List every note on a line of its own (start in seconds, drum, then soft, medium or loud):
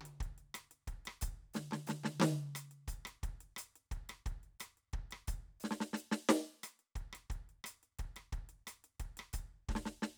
0.01 high tom soft
0.05 closed hi-hat soft
0.20 kick soft
0.20 closed hi-hat soft
0.38 closed hi-hat soft
0.54 cross-stick medium
0.54 closed hi-hat medium
0.71 closed hi-hat soft
0.87 kick soft
0.87 closed hi-hat soft
1.05 cross-stick medium
1.05 closed hi-hat soft
1.21 closed hi-hat medium
1.21 kick medium
1.54 snare medium
1.54 hi-hat pedal medium
1.54 high tom medium
1.71 snare medium
1.71 high tom medium
1.87 snare medium
1.87 hi-hat pedal medium
1.87 high tom medium
2.04 snare medium
2.04 high tom medium
2.20 snare medium
2.20 high tom loud
2.55 closed hi-hat medium
2.55 cross-stick medium
2.71 closed hi-hat soft
2.88 closed hi-hat soft
2.88 kick soft
3.05 cross-stick medium
3.05 closed hi-hat soft
3.23 kick soft
3.23 closed hi-hat soft
3.41 closed hi-hat soft
3.57 closed hi-hat medium
3.57 cross-stick medium
3.76 closed hi-hat soft
3.91 kick soft
3.91 closed hi-hat soft
4.09 cross-stick medium
4.09 closed hi-hat soft
4.26 kick medium
4.26 closed hi-hat soft
4.43 closed hi-hat soft
4.60 closed hi-hat medium
4.60 cross-stick medium
4.77 closed hi-hat soft
4.93 kick soft
4.93 closed hi-hat soft
5.11 cross-stick medium
5.11 closed hi-hat soft
5.28 closed hi-hat medium
5.28 kick medium
5.60 snare medium
5.60 hi-hat pedal soft
5.71 snare medium
5.81 snare medium
5.93 snare medium
5.93 hi-hat pedal medium
6.12 snare medium
6.29 snare loud
6.63 closed hi-hat medium
6.63 cross-stick medium
6.79 closed hi-hat soft
6.96 kick soft
6.96 closed hi-hat soft
7.13 cross-stick medium
7.13 closed hi-hat soft
7.30 kick soft
7.30 closed hi-hat soft
7.49 closed hi-hat soft
7.64 closed hi-hat medium
7.64 cross-stick medium
7.83 closed hi-hat soft
7.99 kick soft
7.99 closed hi-hat soft
8.16 cross-stick medium
8.16 closed hi-hat soft
8.33 kick soft
8.33 closed hi-hat soft
8.49 closed hi-hat soft
8.67 closed hi-hat medium
8.67 cross-stick medium
8.84 closed hi-hat soft
9.00 kick soft
9.00 closed hi-hat soft
9.17 cross-stick medium
9.17 closed hi-hat soft
9.33 closed hi-hat medium
9.33 kick soft
9.69 kick medium
9.69 snare soft
9.75 snare medium
9.86 snare soft
10.02 snare medium